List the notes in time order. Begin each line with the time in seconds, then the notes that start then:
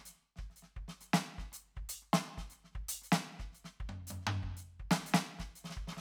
0.01 cross-stick
0.05 hi-hat pedal
0.23 cross-stick
0.36 kick, snare
0.39 snare
0.50 snare, crash
0.56 hi-hat pedal
0.63 snare
0.76 kick, cross-stick
0.88 snare
0.97 snare
1.01 cross-stick, snare, hi-hat pedal
1.14 snare
1.27 snare
1.38 kick, snare
1.51 cross-stick, snare, hi-hat pedal
1.74 kick, cross-stick, snare
1.89 closed hi-hat
2.02 cross-stick
2.13 snare
2.19 cross-stick
2.38 kick, snare
2.50 cross-stick, snare, hi-hat pedal
2.64 snare
2.71 kick, snare
2.76 snare
2.89 closed hi-hat
3.02 cross-stick, hi-hat pedal
3.12 snare
3.28 cross-stick
3.39 kick, snare
3.52 snare, hi-hat pedal
3.65 snare
3.77 kick, snare
3.89 high tom
4.00 cross-stick
4.07 hi-hat pedal, high tom
4.12 closed hi-hat
4.21 snare
4.27 high tom
4.43 kick
4.56 snare, hi-hat pedal
4.80 kick
4.91 snare
5.03 snare, hi-hat pedal
5.14 snare
5.27 snare
5.39 kick, snare
5.51 snare
5.53 snare, hi-hat pedal, open hi-hat
5.64 snare
5.70 snare
5.77 kick, cross-stick
5.88 snare
5.92 cross-stick
5.97 snare